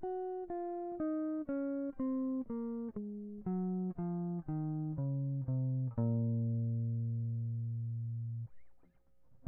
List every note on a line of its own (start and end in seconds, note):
0.04 0.50 F#4
0.50 1.02 F4
1.01 1.46 D#4
1.49 1.92 C#4
2.00 2.45 C4
2.51 2.93 A#3
2.98 3.45 G#3
3.48 3.94 F#3
4.00 4.44 F3
4.50 4.99 D#3
5.00 5.47 C#3
5.50 5.91 C3
6.00 8.48 A#2